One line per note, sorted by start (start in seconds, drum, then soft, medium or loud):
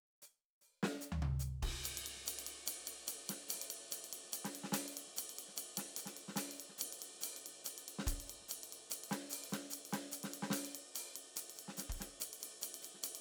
0.22 hi-hat pedal medium
0.61 hi-hat pedal soft
0.83 snare medium
1.01 hi-hat pedal medium
1.12 floor tom medium
1.22 high tom medium
1.39 hi-hat pedal medium
1.62 kick medium
1.62 crash medium
1.62 ride medium
1.83 hi-hat pedal medium
1.83 ride loud
1.97 ride medium
2.03 hi-hat pedal soft
2.03 ride medium
2.16 snare soft
2.24 snare soft
2.24 hi-hat pedal medium
2.24 ride loud
2.39 ride medium
2.45 hi-hat pedal soft
2.45 ride medium
2.66 hi-hat pedal medium
2.66 ride loud
2.86 hi-hat pedal soft
2.86 ride medium
3.07 hi-hat pedal medium
3.07 ride loud
3.27 snare soft
3.27 hi-hat pedal soft
3.27 ride loud
3.49 hi-hat pedal medium
3.49 ride loud
3.54 snare soft
3.61 ride medium
3.69 hi-hat pedal soft
3.69 ride medium
3.91 hi-hat pedal medium
3.91 ride loud
4.04 ride medium
4.10 hi-hat pedal soft
4.10 ride medium
4.24 snare soft
4.32 hi-hat pedal medium
4.32 ride loud
4.44 snare soft
4.44 ride medium
4.51 hi-hat pedal soft
4.51 ride medium
4.63 snare soft
4.72 snare medium
4.72 hi-hat pedal loud
4.72 ride loud
4.88 ride medium
4.92 hi-hat pedal soft
4.97 ride medium
5.07 snare soft
5.16 hi-hat pedal loud
5.16 ride loud
5.29 ride medium
5.35 hi-hat pedal soft
5.35 ride medium
5.48 snare soft
5.56 hi-hat pedal medium
5.56 ride loud
5.74 snare soft
5.74 hi-hat pedal soft
5.74 ride loud
5.96 hi-hat pedal medium
5.96 ride medium
6.05 snare soft
6.05 ride medium
6.17 ride medium
6.28 snare soft
6.36 snare medium
6.36 hi-hat pedal medium
6.36 ride medium
6.51 ride medium
6.55 hi-hat pedal soft
6.59 ride medium
6.69 snare soft
6.78 snare soft
6.78 hi-hat pedal loud
6.78 ride loud
6.92 ride medium
6.98 hi-hat pedal soft
6.98 ride medium
7.13 snare soft
7.21 hi-hat pedal medium
7.21 ride loud
7.36 ride medium
7.46 ride medium
7.64 hi-hat pedal loud
7.64 ride medium
7.78 ride medium
7.88 ride medium
7.98 snare medium
8.06 kick medium
8.06 hi-hat pedal medium
8.06 ride medium
8.20 ride medium
8.27 hi-hat pedal soft
8.27 ride medium
8.41 snare soft
8.48 hi-hat pedal medium
8.48 ride loud
8.63 ride medium
8.68 hi-hat pedal soft
8.72 ride medium
8.90 hi-hat pedal loud
8.90 ride loud
9.03 ride medium
9.09 snare medium
9.09 hi-hat pedal soft
9.09 ride medium
9.30 hi-hat pedal loud
9.30 ride medium
9.44 ride medium
9.49 snare medium
9.49 hi-hat pedal soft
9.54 ride medium
9.70 hi-hat pedal loud
9.70 ride medium
9.85 ride medium
9.89 snare medium
9.89 hi-hat pedal soft
9.93 ride medium
10.11 hi-hat pedal loud
10.11 ride medium
10.23 snare soft
10.23 ride medium
10.31 hi-hat pedal soft
10.31 ride medium
10.42 snare medium
10.50 snare medium
10.50 hi-hat pedal loud
10.50 ride medium
10.65 ride medium
10.71 hi-hat pedal soft
10.71 ride medium
10.95 hi-hat pedal loud
10.95 ride medium
11.16 ride medium
11.36 hi-hat pedal loud
11.36 ride medium
11.50 ride medium
11.55 hi-hat pedal soft
11.55 ride medium
11.68 snare soft
11.77 snare soft
11.77 hi-hat pedal medium
11.77 ride medium
11.89 kick soft
11.89 ride medium
11.97 snare soft
11.97 hi-hat pedal soft
12.02 ride medium
12.20 hi-hat pedal loud
12.20 ride medium
12.33 ride medium
12.40 hi-hat pedal soft
12.40 ride medium
12.61 hi-hat pedal medium
12.61 ride loud
12.74 ride medium
12.82 hi-hat pedal medium
12.82 ride medium
12.94 snare soft
13.03 hi-hat pedal medium
13.03 ride loud
13.15 ride medium